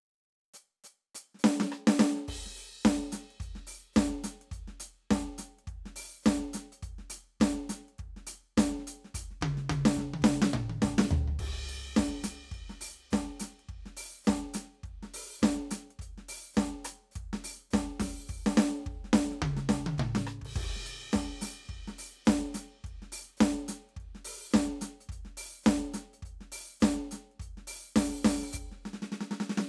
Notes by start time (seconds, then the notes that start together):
0.54 hi-hat pedal
0.84 hi-hat pedal
1.15 hi-hat pedal
1.34 snare
1.39 hi-hat pedal
1.44 snare
1.60 snare
1.72 cross-stick
1.87 snare, hi-hat pedal
1.99 snare
2.16 snare
2.28 kick, crash
2.46 snare
2.56 open hi-hat
2.84 kick, snare, hi-hat pedal
3.12 closed hi-hat, snare
3.30 closed hi-hat
3.40 closed hi-hat, kick
3.55 snare
3.67 open hi-hat
3.93 kick, snare, hi-hat pedal
4.24 closed hi-hat, snare
4.41 closed hi-hat
4.51 closed hi-hat, kick
4.68 snare
4.80 closed hi-hat
5.11 kick, snare
5.38 closed hi-hat, snare
5.59 closed hi-hat
5.67 kick
5.85 snare
5.96 open hi-hat
6.23 kick, snare, hi-hat pedal
6.53 closed hi-hat, snare
6.72 closed hi-hat
6.83 closed hi-hat, kick
6.98 snare
7.10 closed hi-hat
7.40 kick, snare
7.69 closed hi-hat, snare
7.88 closed hi-hat
7.99 kick
8.16 snare
8.27 closed hi-hat
8.57 closed hi-hat, kick, snare
8.78 snare
8.87 closed hi-hat
9.04 snare
9.14 closed hi-hat, kick
9.31 snare
9.41 kick, high tom
9.57 snare
9.69 kick, hi-hat pedal, high tom
9.85 snare
9.96 kick, snare
10.14 high tom
10.22 kick, snare
10.42 snare
10.53 kick, mid tom
10.70 high tom
10.82 kick, snare
10.98 snare
11.11 kick, floor tom
11.28 floor tom
11.39 kick, ride
11.69 open hi-hat
11.95 kick, snare, hi-hat pedal
12.24 closed hi-hat, snare
12.44 closed hi-hat
12.51 kick, closed hi-hat
12.69 snare
12.81 open hi-hat
13.10 kick, snare, hi-hat pedal
13.40 closed hi-hat, snare
13.59 closed hi-hat
13.69 kick, closed hi-hat
13.86 snare
13.97 open hi-hat
14.24 snare, hi-hat pedal
14.28 kick
14.54 closed hi-hat, snare
14.75 closed hi-hat
14.83 kick, closed hi-hat
15.03 snare
15.14 open hi-hat
15.39 kick, hi-hat pedal
15.43 snare
15.71 closed hi-hat, snare
15.90 closed hi-hat
15.99 closed hi-hat, kick
16.18 snare
16.28 open hi-hat
16.54 kick, snare, hi-hat pedal
16.85 closed hi-hat, cross-stick
17.11 hi-hat pedal
17.15 kick, closed hi-hat
17.33 snare
17.44 open hi-hat
17.70 kick, snare, hi-hat pedal
18.00 open hi-hat, kick, snare
18.29 kick, open hi-hat
18.46 snare
18.54 kick, snare
18.86 kick
19.04 snare
19.13 kick, snare
19.30 snare
19.42 kick, hi-hat pedal, high tom
19.57 snare
19.69 kick, snare
19.86 high tom
19.98 kick, mid tom
20.15 snare
20.27 cross-stick
20.41 kick, crash
20.56 kick, ride
20.76 snare
20.86 closed hi-hat
21.12 kick, snare, hi-hat pedal
21.41 open hi-hat, snare
21.64 hi-hat pedal
21.69 kick, closed hi-hat
21.88 snare
21.98 open hi-hat
22.25 kick, snare, hi-hat pedal
22.54 open hi-hat, snare
22.84 kick, closed hi-hat
23.02 snare
23.12 open hi-hat
23.37 kick, snare, hi-hat pedal
23.68 open hi-hat, snare
23.89 closed hi-hat
23.96 kick, closed hi-hat
24.15 snare
24.25 open hi-hat
24.51 snare, hi-hat pedal
24.55 kick
24.81 closed hi-hat, snare
25.00 closed hi-hat
25.09 closed hi-hat, kick
25.25 snare
25.37 open hi-hat
25.63 kick, snare, hi-hat pedal
25.94 closed hi-hat, snare
26.13 closed hi-hat
26.22 closed hi-hat, kick
26.41 snare
26.52 open hi-hat
26.80 kick, snare, hi-hat pedal
27.11 closed hi-hat, snare
27.31 closed hi-hat
27.40 closed hi-hat, kick
27.57 snare
27.67 open hi-hat
27.96 open hi-hat, kick, snare
28.25 open hi-hat, kick, snare
28.41 snare
28.53 open hi-hat, kick, hi-hat pedal
28.72 snare
28.78 kick
28.85 snare
28.93 snare
29.02 snare
29.12 snare
29.21 snare
29.31 snare
29.40 snare
29.49 snare
29.57 snare